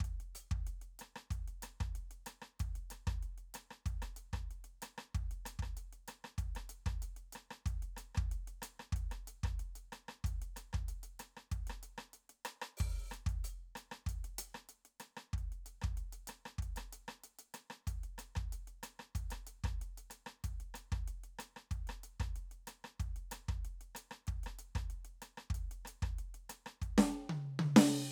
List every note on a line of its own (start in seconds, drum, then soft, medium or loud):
0.01 kick medium
0.01 closed hi-hat soft
0.21 closed hi-hat soft
0.36 closed hi-hat medium
0.52 kick medium
0.68 closed hi-hat soft
0.82 closed hi-hat soft
1.00 cross-stick medium
1.00 closed hi-hat medium
1.17 cross-stick medium
1.31 kick medium
1.31 closed hi-hat soft
1.49 closed hi-hat soft
1.63 cross-stick medium
1.63 closed hi-hat medium
1.81 kick medium
1.81 cross-stick medium
1.96 closed hi-hat soft
2.12 closed hi-hat soft
2.27 cross-stick medium
2.27 closed hi-hat medium
2.43 cross-stick medium
2.60 kick medium
2.60 closed hi-hat medium
2.76 closed hi-hat soft
2.91 cross-stick soft
2.91 closed hi-hat medium
3.08 kick medium
3.08 cross-stick medium
3.24 closed hi-hat soft
3.39 closed hi-hat soft
3.55 cross-stick medium
3.55 closed hi-hat medium
3.72 cross-stick medium
3.87 kick medium
3.87 closed hi-hat soft
4.03 cross-stick medium
4.03 closed hi-hat soft
4.17 closed hi-hat medium
4.34 kick medium
4.34 cross-stick medium
4.52 closed hi-hat soft
4.65 closed hi-hat soft
4.83 cross-stick medium
4.83 closed hi-hat medium
4.99 cross-stick medium
5.15 kick medium
5.15 closed hi-hat soft
5.32 closed hi-hat soft
5.46 cross-stick medium
5.46 closed hi-hat medium
5.60 kick medium
5.60 cross-stick medium
5.78 closed hi-hat medium
5.93 closed hi-hat soft
6.09 cross-stick medium
6.09 closed hi-hat medium
6.25 cross-stick medium
6.39 kick medium
6.39 closed hi-hat soft
6.56 cross-stick medium
6.56 closed hi-hat soft
6.70 closed hi-hat medium
6.87 kick medium
6.87 cross-stick medium
7.03 closed hi-hat medium
7.17 closed hi-hat soft
7.33 cross-stick medium
7.33 closed hi-hat medium
7.51 cross-stick medium
7.67 kick medium
7.67 closed hi-hat soft
7.83 closed hi-hat soft
7.97 cross-stick medium
7.97 closed hi-hat medium
8.16 kick medium
8.16 cross-stick medium
8.32 closed hi-hat soft
8.48 closed hi-hat soft
8.63 cross-stick medium
8.63 closed hi-hat medium
8.80 cross-stick medium
8.93 kick medium
8.93 closed hi-hat soft
9.12 cross-stick medium
9.12 closed hi-hat soft
9.28 closed hi-hat medium
9.44 kick medium
9.44 cross-stick medium
9.60 closed hi-hat soft
9.76 closed hi-hat medium
9.93 cross-stick medium
9.93 closed hi-hat soft
10.09 cross-stick medium
10.25 kick medium
10.25 closed hi-hat medium
10.43 closed hi-hat soft
10.57 cross-stick medium
10.57 closed hi-hat medium
10.74 kick medium
10.74 cross-stick medium
10.89 closed hi-hat medium
11.04 closed hi-hat medium
11.20 cross-stick medium
11.20 closed hi-hat medium
11.38 cross-stick medium
11.52 kick medium
11.52 closed hi-hat soft
11.68 cross-stick medium
11.68 closed hi-hat soft
11.84 closed hi-hat medium
11.99 cross-stick medium
12.14 closed hi-hat medium
12.30 closed hi-hat soft
12.46 cross-stick medium
12.46 closed hi-hat medium
12.63 cross-stick medium
12.78 open hi-hat medium
12.78 kick medium
13.11 cross-stick medium
13.11 closed hi-hat soft
13.11 hi-hat pedal soft
13.27 kick medium
13.27 closed hi-hat soft
13.45 closed hi-hat medium
13.76 cross-stick medium
13.76 closed hi-hat medium
13.92 cross-stick medium
14.07 kick medium
14.07 closed hi-hat medium
14.25 closed hi-hat soft
14.39 closed hi-hat loud
14.55 cross-stick medium
14.70 closed hi-hat medium
14.86 closed hi-hat soft
15.01 cross-stick medium
15.01 closed hi-hat medium
15.18 cross-stick medium
15.34 kick medium
15.39 closed hi-hat soft
15.53 closed hi-hat soft
15.67 closed hi-hat medium
15.82 kick medium
15.82 cross-stick medium
15.98 closed hi-hat soft
16.13 closed hi-hat medium
16.28 cross-stick medium
16.28 closed hi-hat medium
16.46 cross-stick medium
16.59 kick medium
16.59 closed hi-hat soft
16.77 cross-stick medium
16.77 closed hi-hat medium
16.93 closed hi-hat medium
17.09 cross-stick medium
17.24 closed hi-hat medium
17.40 closed hi-hat medium
17.55 cross-stick medium
17.55 closed hi-hat medium
17.71 cross-stick medium
17.88 kick medium
17.88 closed hi-hat medium
18.04 closed hi-hat soft
18.19 cross-stick medium
18.19 closed hi-hat medium
18.36 kick medium
18.36 cross-stick medium
18.53 closed hi-hat medium
18.68 closed hi-hat soft
18.84 cross-stick medium
18.84 closed hi-hat medium
19.00 cross-stick medium
19.16 kick medium
19.16 closed hi-hat medium
19.31 cross-stick medium
19.31 closed hi-hat medium
19.48 closed hi-hat medium
19.65 kick medium
19.65 cross-stick medium
19.82 closed hi-hat soft
19.98 closed hi-hat medium
20.11 cross-stick soft
20.11 closed hi-hat medium
20.27 cross-stick medium
20.45 kick medium
20.45 closed hi-hat medium
20.61 closed hi-hat soft
20.75 cross-stick medium
20.75 closed hi-hat medium
20.93 kick medium
20.93 cross-stick medium
21.09 closed hi-hat soft
21.24 closed hi-hat soft
21.40 cross-stick medium
21.40 closed hi-hat medium
21.57 cross-stick medium
21.72 kick medium
21.72 closed hi-hat soft
21.88 cross-stick medium
21.88 closed hi-hat soft
22.04 closed hi-hat medium
22.21 kick medium
22.21 cross-stick medium
22.37 closed hi-hat soft
22.52 closed hi-hat soft
22.68 cross-stick medium
22.68 closed hi-hat medium
22.85 cross-stick medium
23.01 kick medium
23.01 closed hi-hat soft
23.17 closed hi-hat soft
23.32 cross-stick medium
23.32 closed hi-hat medium
23.49 kick medium
23.49 cross-stick soft
23.66 closed hi-hat soft
23.82 closed hi-hat soft
23.96 cross-stick medium
23.96 closed hi-hat medium
24.12 cross-stick medium
24.28 kick medium
24.28 closed hi-hat soft
24.44 cross-stick medium
24.44 closed hi-hat soft
24.60 closed hi-hat medium
24.76 kick medium
24.76 cross-stick medium
24.91 closed hi-hat soft
25.06 closed hi-hat soft
25.23 cross-stick medium
25.23 closed hi-hat medium
25.38 cross-stick medium
25.51 kick medium
25.55 closed hi-hat medium
25.72 closed hi-hat soft
25.86 cross-stick medium
25.86 closed hi-hat medium
26.03 kick medium
26.03 cross-stick medium
26.19 closed hi-hat soft
26.35 closed hi-hat soft
26.50 cross-stick medium
26.50 closed hi-hat medium
26.67 cross-stick medium
26.82 kick medium
26.82 closed hi-hat soft
26.99 snare loud
27.13 closed hi-hat soft
27.30 high tom medium
27.60 high tom loud
27.77 snare loud
27.77 crash medium